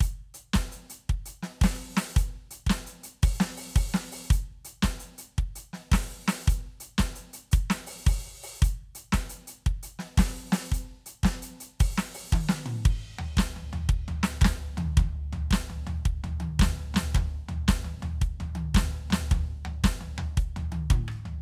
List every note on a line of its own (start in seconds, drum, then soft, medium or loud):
0.01 closed hi-hat loud
0.01 kick loud
0.34 closed hi-hat loud
0.54 kick medium
0.54 snare loud
0.72 closed hi-hat loud
0.90 closed hi-hat loud
1.10 kick medium
1.26 closed hi-hat loud
1.43 snare medium
1.62 open hi-hat loud
1.62 kick loud
1.62 snare loud
1.97 open hi-hat loud
1.97 snare loud
2.14 closed hi-hat loud
2.14 kick loud
2.14 hi-hat pedal soft
2.51 closed hi-hat loud
2.67 kick medium
2.67 snare loud
2.87 closed hi-hat loud
3.04 closed hi-hat loud
3.23 open hi-hat loud
3.23 kick loud
3.41 snare loud
3.57 open hi-hat loud
3.76 open hi-hat loud
3.76 kick loud
3.94 snare loud
4.12 open hi-hat loud
4.27 kick loud
4.27 hi-hat pedal soft
4.33 closed hi-hat loud
4.65 closed hi-hat loud
4.83 kick medium
4.83 snare loud
5.00 closed hi-hat loud
5.19 closed hi-hat loud
5.39 kick medium
5.56 closed hi-hat loud
5.74 snare medium
5.92 open hi-hat loud
5.92 kick loud
5.92 snare loud
6.28 open hi-hat loud
6.28 snare loud
6.45 kick loud
6.45 hi-hat pedal soft
6.50 closed hi-hat loud
6.81 closed hi-hat loud
6.99 kick medium
6.99 snare loud
7.16 closed hi-hat loud
7.34 closed hi-hat loud
7.52 closed hi-hat loud
7.52 kick loud
7.70 snare loud
7.87 open hi-hat loud
8.07 open hi-hat loud
8.07 kick loud
8.43 open hi-hat loud
8.60 kick loud
8.60 hi-hat pedal medium
8.64 closed hi-hat loud
8.95 closed hi-hat loud
9.13 kick medium
9.13 snare loud
9.30 closed hi-hat loud
9.48 closed hi-hat loud
9.67 kick loud
9.83 closed hi-hat loud
9.99 snare medium
10.18 open hi-hat loud
10.18 kick loud
10.18 snare loud
10.53 open hi-hat loud
10.53 snare loud
10.70 kick medium
10.70 hi-hat pedal soft
10.74 closed hi-hat loud
11.06 closed hi-hat loud
11.24 kick loud
11.24 snare loud
11.43 closed hi-hat loud
11.61 closed hi-hat loud
11.80 open hi-hat loud
11.80 kick loud
11.98 snare loud
12.15 open hi-hat loud
12.33 kick loud
12.33 high tom loud
12.49 snare loud
12.66 mid tom loud
12.86 kick loud
12.86 ride medium
13.19 floor tom loud
13.37 kick loud
13.37 snare loud
13.37 hi-hat pedal medium
13.57 floor tom medium
13.73 floor tom loud
13.89 kick loud
14.08 floor tom loud
14.24 snare loud
14.42 kick loud
14.42 snare loud
14.42 floor tom loud
14.78 floor tom loud
14.78 high tom loud
14.98 kick loud
14.98 floor tom loud
15.33 floor tom loud
15.51 kick loud
15.51 snare loud
15.51 hi-hat pedal soft
15.70 floor tom loud
15.87 floor tom loud
16.06 kick loud
16.24 floor tom loud
16.40 high tom loud
16.60 kick loud
16.60 snare loud
16.60 floor tom loud
16.95 snare loud
16.95 floor tom loud
17.15 kick loud
17.15 hi-hat pedal medium
17.15 floor tom loud
17.49 floor tom loud
17.68 kick loud
17.68 snare loud
17.85 floor tom loud
18.03 floor tom loud
18.22 kick loud
18.22 hi-hat pedal medium
18.41 floor tom loud
18.55 high tom loud
18.75 kick loud
18.75 snare loud
18.75 floor tom loud
19.11 snare loud
19.11 floor tom loud
19.30 kick loud
19.30 floor tom loud
19.30 hi-hat pedal soft
19.66 floor tom loud
19.84 kick loud
19.84 snare loud
20.01 floor tom medium
20.18 floor tom loud
20.38 kick loud
20.38 hi-hat pedal medium
20.57 floor tom loud
20.72 high tom loud
20.91 kick loud
20.91 mid tom loud
21.08 cross-stick medium
21.26 floor tom loud